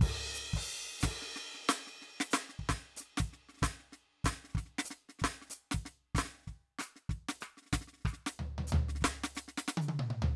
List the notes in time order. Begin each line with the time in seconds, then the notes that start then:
0.01 kick, ride
0.34 hi-hat pedal
0.53 kick, crash
1.00 kick, snare, hi-hat pedal, ride
1.22 snare
1.36 snare
1.54 snare
1.59 snare
1.63 snare
1.66 snare, hi-hat pedal
1.69 snare
1.87 snare
2.02 snare
2.20 snare
2.31 snare, hi-hat pedal
2.49 snare
2.59 kick
2.69 kick, snare
2.96 snare, hi-hat pedal
3.17 kick, snare
3.33 snare
3.49 snare
3.53 snare
3.57 snare
3.61 kick, snare
3.63 snare, hi-hat pedal
3.79 snare
3.92 snare
4.24 kick, snare, hi-hat pedal
4.32 snare
4.44 snare
4.49 snare
4.52 kick, snare
4.57 snare
4.65 snare
4.78 snare
4.84 hi-hat pedal
4.90 snare
5.09 snare
5.22 kick, snare
5.24 snare
5.42 snare
5.46 snare
5.49 snare, hi-hat pedal
5.51 snare
5.71 kick, snare
5.85 snare
6.15 kick, snare, hi-hat pedal
6.18 snare
6.25 snare
6.29 snare
6.34 snare
6.38 snare
6.42 snare
6.47 kick, snare
6.79 cross-stick, snare, hi-hat pedal
6.96 snare
7.09 kick, snare
7.28 snare
7.41 cross-stick, hi-hat pedal
7.57 snare
7.62 snare
7.66 snare
7.73 kick, snare
7.81 snare
7.87 snare
7.93 snare
7.97 snare
8.00 snare
8.03 kick, cross-stick, snare, hi-hat pedal
8.13 snare
8.26 snare
8.39 floor tom
8.58 floor tom
8.67 hi-hat pedal
8.72 floor tom
8.88 snare
8.95 snare
9.00 kick, snare
9.04 snare
9.24 snare
9.35 snare, hi-hat pedal
9.48 snare
9.57 snare
9.68 snare
9.77 high tom
9.81 hi-hat pedal
9.88 high tom
9.99 mid tom
10.10 mid tom
10.22 floor tom